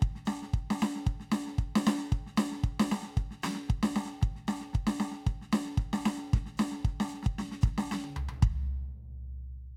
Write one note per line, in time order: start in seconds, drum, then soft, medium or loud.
0.01 kick loud
0.01 snare soft
0.15 snare soft
0.26 snare loud
0.26 hi-hat pedal medium
0.42 snare soft
0.54 kick medium
0.54 snare soft
0.71 snare loud
0.79 snare loud
0.79 hi-hat pedal medium
0.96 snare soft
1.06 kick medium
1.06 snare soft
1.20 snare soft
1.32 snare loud
1.32 hi-hat pedal medium
1.47 snare soft
1.59 kick medium
1.59 snare soft
1.76 snare loud
1.84 snare loud
1.84 hi-hat pedal medium
1.98 snare medium
2.12 kick medium
2.12 snare soft
2.27 snare soft
2.37 snare loud
2.37 hi-hat pedal medium
2.52 snare soft
2.64 kick medium
2.64 snare soft
2.80 snare loud
2.89 snare loud
2.89 hi-hat pedal medium
3.03 snare soft
3.17 kick medium
3.17 snare soft
3.31 snare soft
3.43 snare loud
3.43 hi-hat pedal medium
3.55 snare soft
3.69 kick medium
3.69 snare soft
3.83 snare loud
3.95 snare loud
3.95 hi-hat pedal medium
4.05 snare medium
4.22 kick medium
4.22 snare soft
4.36 snare soft
4.47 snare loud
4.47 hi-hat pedal medium
4.60 snare soft
4.73 kick medium
4.73 snare soft
4.87 snare loud
5.00 snare loud
5.00 hi-hat pedal medium
5.12 snare soft
5.27 kick medium
5.27 snare soft
5.42 snare soft
5.52 snare loud
5.52 hi-hat pedal medium
5.66 snare soft
5.78 kick medium
5.78 snare soft
5.93 snare loud
6.05 snare loud
6.05 hi-hat pedal medium
6.17 snare soft
6.34 kick loud
6.34 snare medium
6.46 snare soft
6.57 snare loud
6.57 hi-hat pedal medium
6.72 snare soft
6.85 kick medium
6.85 snare soft
7.00 snare loud
7.08 hi-hat pedal medium
7.14 snare soft
7.23 kick medium
7.23 snare soft
7.39 snare medium
7.52 snare medium
7.61 kick loud
7.61 hi-hat pedal medium
7.66 snare soft
7.78 snare loud
7.91 snare loud
8.04 high tom medium
8.16 floor tom loud
8.29 floor tom loud
8.43 kick loud
8.43 floor tom loud